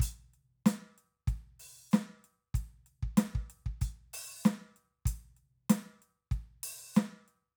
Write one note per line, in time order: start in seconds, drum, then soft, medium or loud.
0.01 closed hi-hat loud
0.01 kick medium
0.35 closed hi-hat soft
0.67 closed hi-hat loud
0.67 snare loud
0.99 closed hi-hat soft
1.29 kick medium
1.29 closed hi-hat soft
1.61 open hi-hat medium
1.92 closed hi-hat medium
1.92 snare loud
1.92 hi-hat pedal medium
2.25 closed hi-hat soft
2.56 kick medium
2.56 closed hi-hat medium
2.87 closed hi-hat soft
3.04 kick medium
3.19 snare loud
3.19 closed hi-hat loud
3.36 kick medium
3.51 closed hi-hat soft
3.67 kick medium
3.83 closed hi-hat medium
3.83 kick medium
4.15 open hi-hat loud
4.45 snare loud
4.45 closed hi-hat medium
4.45 hi-hat pedal medium
4.77 closed hi-hat soft
5.07 kick medium
5.07 closed hi-hat loud
5.38 closed hi-hat soft
5.71 snare loud
5.71 closed hi-hat loud
6.03 closed hi-hat soft
6.33 kick medium
6.33 closed hi-hat soft
6.64 open hi-hat loud
6.96 snare loud
6.96 closed hi-hat soft
6.96 hi-hat pedal medium
7.29 closed hi-hat soft